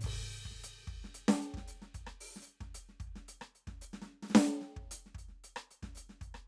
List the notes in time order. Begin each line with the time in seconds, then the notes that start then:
0.01 kick, hi-hat pedal
0.06 crash
0.22 snare
0.31 closed hi-hat
0.45 kick
0.51 snare
0.58 hi-hat pedal
0.64 closed hi-hat
0.87 kick, closed hi-hat
0.93 kick
1.04 snare
1.14 closed hi-hat
1.28 snare
1.42 closed hi-hat
1.54 kick, snare
1.68 hi-hat pedal
1.82 snare
1.94 closed hi-hat, kick
2.07 cross-stick
2.21 open hi-hat
2.36 snare
2.42 hi-hat pedal
2.47 closed hi-hat
2.60 kick, snare
2.75 closed hi-hat
2.89 snare
3.00 closed hi-hat, kick
3.07 kick
3.16 snare
3.28 closed hi-hat
3.41 cross-stick
3.55 closed hi-hat
3.67 kick, snare
3.81 open hi-hat, hi-hat pedal
3.93 snare
4.02 snare
4.06 snare
4.13 snare
4.19 snare
4.23 snare
4.28 kick, snare, hi-hat pedal
4.35 snare
4.61 snare
4.76 kick
4.91 closed hi-hat
5.06 snare
5.15 closed hi-hat, kick
5.29 snare
5.35 snare
5.44 closed hi-hat
5.56 cross-stick
5.71 closed hi-hat
5.83 kick, snare
5.95 closed hi-hat, hi-hat pedal
6.09 snare
6.21 closed hi-hat, kick
6.34 cross-stick